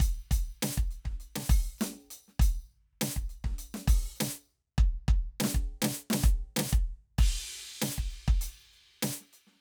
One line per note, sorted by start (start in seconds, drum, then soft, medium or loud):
0.01 closed hi-hat loud
0.01 kick loud
0.01 snare soft
0.32 closed hi-hat loud
0.32 kick loud
0.63 closed hi-hat loud
0.63 snare loud
0.78 kick medium
0.92 closed hi-hat soft
1.06 kick medium
1.06 snare soft
1.10 snare soft
1.10 crash soft
1.13 snare soft
1.21 closed hi-hat soft
1.37 snare loud
1.50 kick loud
1.50 percussion loud
1.79 closed hi-hat loud
1.79 snare loud
1.79 hi-hat pedal soft
2.05 kick soft
2.11 closed hi-hat loud
2.29 snare soft
2.41 closed hi-hat loud
2.41 kick loud
2.94 kick soft
3.02 closed hi-hat loud
3.02 snare loud
3.17 kick medium
3.30 closed hi-hat soft
3.45 kick medium
3.45 snare soft
3.49 snare soft
3.52 snare soft
3.56 closed hi-hat medium
3.56 snare soft
3.75 snare medium
3.89 kick loud
3.89 percussion loud
4.17 hi-hat pedal soft
4.21 closed hi-hat loud
4.21 snare loud
4.79 kick loud
5.09 kick loud
5.41 snare loud
5.45 snare loud
5.55 kick medium
5.83 snare loud
5.85 snare loud
6.11 snare loud
6.14 snare loud
6.25 kick loud
6.57 snare loud
6.60 snare loud
6.74 kick loud
7.19 kick loud
7.19 crash loud
7.83 closed hi-hat loud
7.83 snare loud
7.99 kick medium
8.11 closed hi-hat soft
8.29 kick loud
8.42 closed hi-hat loud
8.74 closed hi-hat soft
9.04 closed hi-hat loud
9.04 snare loud
9.21 snare soft
9.34 closed hi-hat soft
9.48 snare soft
9.52 snare soft
9.56 snare soft